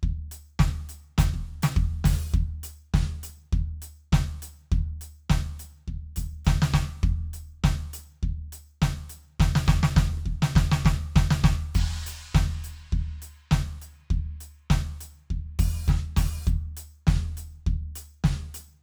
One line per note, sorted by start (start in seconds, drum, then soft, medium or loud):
0.03 kick loud
0.31 percussion loud
0.59 kick loud
0.59 snare loud
0.89 percussion loud
1.18 kick loud
1.18 snare loud
1.18 percussion loud
1.22 percussion medium
1.34 kick medium
1.62 snare loud
1.62 percussion loud
1.76 kick loud
2.04 kick loud
2.04 snare loud
2.04 percussion loud
2.32 kick loud
2.32 percussion soft
2.63 percussion loud
2.94 kick loud
2.94 snare loud
3.23 percussion loud
3.53 kick loud
3.82 percussion loud
4.12 kick loud
4.12 snare loud
4.42 percussion loud
4.72 kick loud
5.01 percussion loud
5.30 kick loud
5.30 snare loud
5.59 percussion loud
5.88 kick medium
6.16 kick medium
6.16 percussion loud
6.45 kick loud
6.45 snare loud
6.45 percussion medium
6.62 snare loud
6.74 kick medium
6.74 snare loud
7.03 kick loud
7.33 percussion medium
7.64 kick loud
7.64 snare loud
7.93 percussion loud
8.23 kick medium
8.52 percussion loud
8.82 kick medium
8.82 snare loud
9.10 percussion loud
9.40 kick loud
9.40 snare loud
9.55 snare loud
9.66 kick loud
9.66 snare loud
9.66 percussion soft
9.83 snare loud
9.96 kick loud
9.96 snare loud
10.13 cross-stick soft
10.17 cross-stick soft
10.26 kick medium
10.42 snare loud
10.55 kick loud
10.55 snare loud
10.72 snare loud
10.85 kick loud
10.85 snare loud
11.16 kick loud
11.16 snare loud
11.31 snare loud
11.44 kick loud
11.44 snare loud
11.75 kick loud
11.75 percussion medium
11.75 crash loud
12.06 percussion loud
12.35 kick loud
12.35 snare loud
12.64 percussion medium
12.92 kick loud
13.22 percussion loud
13.51 kick loud
13.51 snare loud
13.82 percussion medium
14.10 kick loud
14.41 percussion medium
14.70 kick loud
14.70 snare loud
15.01 percussion loud
15.30 kick medium
15.59 kick loud
15.59 percussion loud
15.87 kick loud
15.87 snare loud
15.87 percussion medium
16.16 kick loud
16.16 snare medium
16.16 percussion loud
16.46 kick loud
16.46 percussion medium
16.77 percussion loud
17.07 kick loud
17.07 snare loud
17.37 percussion loud
17.66 kick loud
17.96 percussion loud
18.24 kick medium
18.24 snare loud
18.54 percussion loud